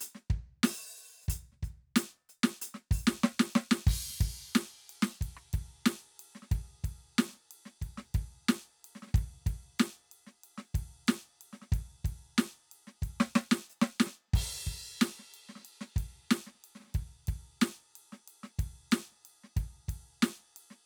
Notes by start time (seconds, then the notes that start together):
0.01 closed hi-hat
0.15 snare
0.30 kick, closed hi-hat
0.63 open hi-hat, snare
0.97 open hi-hat
1.23 hi-hat pedal
1.28 closed hi-hat, kick
1.52 snare
1.63 closed hi-hat, kick
1.96 closed hi-hat, snare
2.29 closed hi-hat
2.44 snare
2.62 closed hi-hat
2.74 snare
2.91 open hi-hat, kick
3.07 snare
3.20 snare, hi-hat pedal
3.40 snare
3.51 hi-hat pedal
3.56 snare
3.71 snare
3.87 kick, crash
4.10 snare
4.21 kick, ride
4.55 snare, ride
4.90 ride
5.03 snare
5.21 kick, ride
5.37 cross-stick
5.53 kick, ride
5.86 snare, ride
6.20 ride
6.35 snare
6.42 snare
6.52 kick, ride
6.84 kick, ride
7.18 snare, ride
7.29 snare
7.33 snare
7.51 ride
7.66 snare
7.82 kick, ride
7.98 snare
8.15 kick, ride
8.49 snare, ride
8.85 ride
8.96 snare
9.02 snare
9.07 snare
9.15 kick, ride
9.46 kick, ride
9.79 snare, ride
10.12 ride
10.27 snare
10.44 ride
10.58 snare
10.75 kick, ride
11.08 snare, ride
11.41 ride
11.53 snare
11.62 snare
11.72 kick, ride
12.05 kick, ride
12.38 snare, ride
12.72 ride
12.87 snare
13.02 kick, ride
13.20 snare
13.36 snare, hi-hat pedal
13.51 snare
13.70 hi-hat pedal
13.82 snare
14.00 snare, hi-hat pedal
14.07 snare
14.28 snare
14.34 kick, crash
14.67 kick, ride
15.01 snare, ride
15.19 snare
15.34 ride
15.49 snare
15.56 snare
15.60 snare
15.65 ride
15.81 snare
15.96 kick, ride
16.31 snare, ride
16.47 snare
16.55 snare
16.64 ride
16.75 snare
16.80 snare
16.84 snare
16.88 snare
16.92 kick, snare, ride
16.96 snare
17.28 kick, ride
17.62 snare, ride
17.96 ride
18.13 snare
18.28 ride
18.44 snare
18.59 kick, ride
18.92 snare, ride
19.12 snare
19.25 ride
19.44 snare
19.57 kick, ride
19.89 kick, ride
20.23 snare, ride
20.39 snare
20.57 ride
20.71 snare